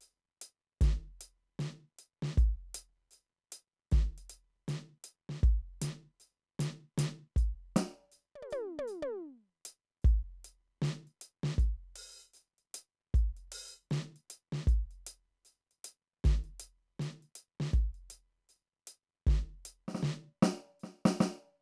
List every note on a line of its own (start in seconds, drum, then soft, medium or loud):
0.01 closed hi-hat soft
0.01 hi-hat pedal medium
0.42 closed hi-hat medium
0.81 kick medium
0.81 snare medium
0.81 closed hi-hat medium
1.21 closed hi-hat medium
1.59 snare medium
1.59 closed hi-hat soft
1.99 closed hi-hat medium
2.22 snare medium
2.37 kick medium
2.37 closed hi-hat soft
2.75 open hi-hat loud
3.11 closed hi-hat soft
3.11 hi-hat pedal medium
3.52 closed hi-hat loud
3.92 kick medium
3.92 snare soft
3.92 closed hi-hat soft
4.18 closed hi-hat soft
4.30 closed hi-hat medium
4.68 snare medium
4.68 closed hi-hat medium
5.04 closed hi-hat medium
5.29 snare soft
5.43 kick medium
5.43 closed hi-hat soft
5.82 open hi-hat loud
5.82 snare medium
6.20 closed hi-hat soft
6.20 hi-hat pedal medium
6.59 snare medium
6.59 closed hi-hat medium
6.98 closed hi-hat loud
6.98 snare medium
7.36 kick medium
7.36 closed hi-hat soft
7.76 open hi-hat loud
7.76 snare medium
8.12 hi-hat pedal medium
8.35 high tom soft
8.42 high tom medium
8.51 hi-hat pedal soft
8.51 high tom medium
8.79 high tom medium
8.88 hi-hat pedal medium
9.02 high tom medium
9.65 open hi-hat loud
10.02 kick medium
10.02 hi-hat pedal soft
10.07 closed hi-hat soft
10.45 closed hi-hat medium
10.82 snare medium
10.82 closed hi-hat soft
11.07 closed hi-hat soft
11.21 closed hi-hat medium
11.43 snare medium
11.58 kick medium
11.58 closed hi-hat soft
11.96 open hi-hat medium
12.34 closed hi-hat soft
12.34 hi-hat pedal medium
12.58 closed hi-hat soft
12.74 closed hi-hat loud
13.14 kick medium
13.14 closed hi-hat soft
13.37 closed hi-hat soft
13.52 open hi-hat loud
13.91 snare medium
13.91 closed hi-hat soft
13.91 hi-hat pedal soft
14.16 closed hi-hat soft
14.30 closed hi-hat medium
14.52 snare medium
14.67 kick medium
14.67 closed hi-hat soft
14.91 closed hi-hat soft
15.07 open hi-hat loud
15.45 closed hi-hat soft
15.45 hi-hat pedal medium
15.71 closed hi-hat soft
15.84 closed hi-hat loud
16.24 kick medium
16.24 snare medium
16.24 closed hi-hat soft
16.44 closed hi-hat soft
16.60 closed hi-hat medium
17.00 snare medium
17.00 closed hi-hat soft
17.22 closed hi-hat soft
17.35 closed hi-hat medium
17.60 snare medium
17.73 kick medium
17.73 closed hi-hat soft
17.94 closed hi-hat soft
18.10 open hi-hat medium
18.49 hi-hat pedal soft
18.87 closed hi-hat medium
19.27 kick medium
19.27 snare medium
19.27 closed hi-hat soft
19.65 closed hi-hat medium
19.88 snare soft
19.95 snare soft
20.00 snare soft
20.03 snare medium
20.43 snare loud
20.43 hi-hat pedal soft
20.80 hi-hat pedal soft
20.84 snare soft
21.05 snare loud
21.18 snare medium
21.18 hi-hat pedal soft